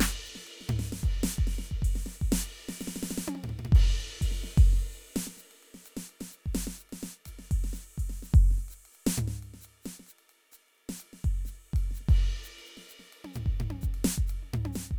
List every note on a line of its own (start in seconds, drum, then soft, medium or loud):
0.01 snare loud
0.01 ride medium
0.25 hi-hat pedal medium
0.25 ride soft
0.36 snare soft
0.47 ride medium
0.61 snare soft
0.70 floor tom loud
0.80 snare medium
0.93 snare medium
1.04 kick medium
1.04 ride medium
1.16 ride soft
1.24 snare loud
1.38 kick medium
1.38 ride medium
1.48 snare soft
1.59 snare soft
1.72 kick medium
1.83 kick medium
1.83 crash medium
1.96 snare soft
2.07 snare soft
2.22 kick medium
2.33 snare loud
2.33 ride medium
2.58 ride soft
2.69 snare medium
2.79 snare medium
2.79 hi-hat pedal medium
2.88 snare medium
2.96 snare medium
3.03 snare medium
3.11 snare medium
3.18 snare medium
3.28 high tom loud
3.36 high tom medium
3.44 floor tom medium
3.50 floor tom medium
3.60 floor tom medium
3.66 floor tom medium
3.73 kick loud
3.73 ride loud
4.01 ride bell soft
4.22 kick medium
4.22 crash medium
4.32 snare soft
4.44 snare soft
4.58 kick loud
4.58 crash medium
4.74 snare soft
4.87 snare soft
4.92 hi-hat pedal soft
4.92 ride soft
5.12 hi-hat pedal soft
5.17 snare loud
5.17 ride medium
5.28 snare soft
5.38 snare soft
5.38 hi-hat pedal medium
5.38 ride medium
5.51 snare soft
5.51 ride medium
5.63 ride medium
5.75 snare soft
5.85 hi-hat pedal medium
5.85 ride medium
5.97 snare medium
6.10 ride medium
6.21 snare medium
6.21 ride medium
6.32 hi-hat pedal medium
6.32 ride soft
6.47 kick medium
6.53 snare medium
6.53 hi-hat pedal soft
6.53 ride medium
6.68 snare medium
6.77 hi-hat pedal medium
6.77 ride medium
6.90 snare medium
6.90 ride medium
7.00 snare medium
7.00 hi-hat pedal soft
7.00 ride medium
7.26 kick soft
7.26 hi-hat pedal medium
7.26 ride loud
7.39 snare soft
7.52 kick medium
7.52 crash medium
7.65 snare soft
7.74 snare soft
7.74 hi-hat pedal medium
7.99 kick medium
7.99 crash medium
8.10 snare soft
8.23 snare soft
8.23 hi-hat pedal medium
8.33 kick loud
8.33 snare soft
8.33 crash medium
8.51 snare soft
8.58 snare soft
8.69 hi-hat pedal medium
8.69 ride medium
8.86 ride medium
8.92 hi-hat pedal soft
8.92 ride medium
9.07 snare loud
9.16 floor tom loud
9.16 hi-hat pedal medium
9.28 snare soft
9.43 ride medium
9.54 snare soft
9.62 hi-hat pedal medium
9.66 ride medium
9.83 snare medium
9.83 hi-hat pedal soft
9.89 ride medium
10.00 snare soft
10.07 hi-hat pedal medium
10.07 ride medium
10.19 ride medium
10.29 hi-hat pedal soft
10.29 ride medium
10.52 hi-hat pedal medium
10.52 ride medium
10.69 ride soft
10.73 hi-hat pedal soft
10.79 ride soft
10.90 snare medium
10.98 hi-hat pedal medium
10.98 ride loud
11.14 snare soft
11.25 kick medium
11.25 crash medium
11.46 snare soft
11.46 hi-hat pedal medium
11.74 kick medium
11.74 ride loud
11.92 snare soft
11.92 hi-hat pedal medium
12.01 snare soft
12.09 kick loud
12.09 ride medium
12.44 hi-hat pedal medium
12.44 ride medium
12.59 ride medium
12.66 hi-hat pedal soft
12.66 ride soft
12.78 snare soft
12.89 hi-hat pedal medium
12.89 ride medium
13.00 snare soft
13.13 ride medium
13.25 high tom medium
13.34 floor tom medium
13.34 hi-hat pedal medium
13.47 kick medium
13.55 hi-hat pedal soft
13.61 floor tom medium
13.71 high tom medium
13.82 kick medium
13.82 hi-hat pedal medium
13.95 ride medium
14.05 snare loud
14.19 kick medium
14.28 hi-hat pedal medium
14.28 ride medium
14.43 high tom soft
14.54 floor tom loud
14.66 high tom medium
14.73 snare medium
14.73 hi-hat pedal medium
14.92 kick medium